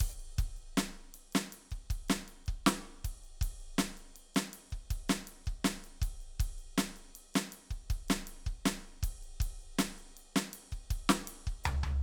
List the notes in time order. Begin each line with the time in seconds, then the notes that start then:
0.01 kick, ride
0.10 hi-hat pedal
0.20 ride
0.39 kick, ride
0.57 ride
0.78 snare, ride
1.15 ride
1.33 snare, ride
1.53 ride
1.71 kick, ride
1.90 kick, ride
2.09 snare, ride
2.28 ride
2.47 kick, ride
2.67 snare, ride
3.05 kick, ride
3.24 ride
3.42 kick, ride
3.60 ride
3.79 snare, ride
3.98 ride
4.16 ride
4.35 snare, ride
4.54 ride
4.71 kick, ride
4.91 kick, ride
5.09 snare, ride
5.28 ride
5.46 kick, ride
5.65 snare, ride
5.84 ride
6.02 kick, ride
6.21 ride
6.40 kick, ride
6.59 ride
6.78 snare, ride
6.96 ride
7.16 ride
7.35 snare, ride
7.53 ride
7.71 kick, ride
7.90 kick, ride
8.09 snare, ride
8.28 ride
8.47 kick, ride
8.66 snare, ride
9.03 kick, ride
9.23 ride
9.40 kick, ride
9.61 ride
9.79 snare, ride
9.98 ride
10.17 ride
10.36 snare, ride
10.54 ride
10.72 kick, ride
10.91 kick, ride
11.10 snare
11.26 hi-hat pedal, ride
11.47 kick
11.64 hi-hat pedal, floor tom
11.84 floor tom